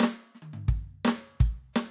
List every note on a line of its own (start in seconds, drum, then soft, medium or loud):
0.00 snare loud
0.03 snare loud
0.35 snare soft
0.42 high tom medium
0.54 floor tom medium
0.69 kick loud
1.05 snare loud
1.08 snare loud
1.40 open hi-hat medium
1.40 kick loud
1.74 snare loud
1.74 hi-hat pedal medium